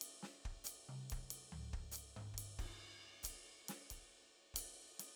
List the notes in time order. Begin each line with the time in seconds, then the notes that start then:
0.01 ride
0.22 snare
0.45 kick
0.64 hi-hat pedal, ride
0.88 high tom
1.10 kick, ride
1.30 ride
1.52 floor tom
1.73 kick
1.91 hi-hat pedal
1.96 ride
2.16 mid tom
2.33 kick
2.38 ride
2.58 kick, ride
3.23 kick, hi-hat pedal, ride
3.68 snare, ride
3.90 kick, ride
4.54 kick, hi-hat pedal, ride
4.99 snare, ride